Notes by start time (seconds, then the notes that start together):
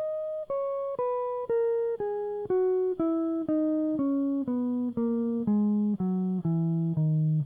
0.00 D#5
0.51 C#5
0.99 B4
1.50 A#4
2.01 G#4
2.51 F#4
3.00 E4
3.49 D#4
4.00 C#4
4.49 B3
4.98 A#3
5.49 G#3
6.01 F#3
6.46 E3
6.99 D#3